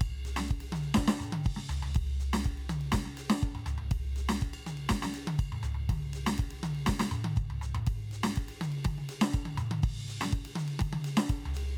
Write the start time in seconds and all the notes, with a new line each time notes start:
0.01 kick, hi-hat pedal, ride bell
0.26 hi-hat pedal, ride
0.37 snare
0.49 kick, hi-hat pedal, ride
0.61 ride
0.73 hi-hat pedal, high tom
0.84 ride bell
0.95 kick, snare, hi-hat pedal, ride bell
1.08 snare
1.20 hi-hat pedal, mid tom
1.33 high tom
1.44 kick, hi-hat pedal, ride
1.57 snare
1.70 floor tom, hi-hat pedal
1.83 floor tom
1.95 kick, hi-hat pedal, ride
2.21 hi-hat pedal, ride
2.34 snare
2.44 kick, hi-hat pedal, ride
2.58 ride
2.70 hi-hat pedal, high tom
2.82 ride
2.93 kick, snare, hi-hat pedal, ride
3.06 snare
3.18 hi-hat pedal, ride
3.31 snare
3.42 kick, hi-hat pedal, ride bell
3.56 mid tom
3.67 floor tom, hi-hat pedal
3.79 floor tom
3.91 kick, hi-hat pedal, ride
4.17 hi-hat pedal, ride
4.30 snare
4.42 kick, hi-hat pedal, ride
4.54 ride bell
4.67 hi-hat pedal, high tom
4.78 ride
4.90 kick, snare, hi-hat pedal, ride bell
5.03 snare
5.15 hi-hat pedal, ride
5.28 high tom
5.39 kick, hi-hat pedal, ride bell
5.53 mid tom
5.64 floor tom, hi-hat pedal
5.75 floor tom
5.90 kick, hi-hat pedal, high tom, ride
6.14 hi-hat pedal, ride
6.27 snare
6.39 kick, hi-hat pedal, ride
6.51 ride
6.64 hi-hat pedal, high tom
6.76 ride
6.87 kick, snare, hi-hat pedal, ride
7.00 snare
7.12 hi-hat pedal, mid tom
7.25 high tom
7.37 kick, hi-hat pedal, ride bell, floor tom
7.51 floor tom
7.62 floor tom, hi-hat pedal
7.75 mid tom
7.87 kick, hi-hat pedal, ride
8.12 hi-hat pedal, ride
8.24 snare
8.37 kick, hi-hat pedal, ride
8.49 ride
8.62 hi-hat pedal, high tom
8.73 ride
8.85 kick, hi-hat pedal, high tom, ride
8.98 high tom
9.10 hi-hat pedal, ride
9.22 snare
9.34 kick, hi-hat pedal, ride bell
9.46 high tom
9.55 kick, hi-hat pedal, mid tom
9.72 high tom
9.83 kick, hi-hat pedal, ride
10.09 hi-hat pedal, ride
10.22 snare
10.33 kick, hi-hat pedal, ride
10.46 ride
10.56 hi-hat pedal, high tom
10.69 ride
10.80 kick, hi-hat pedal, high tom, ride
10.93 high tom
11.05 hi-hat pedal, ride
11.18 snare
11.30 kick, hi-hat pedal, ride
11.46 floor tom
11.55 hi-hat pedal, ride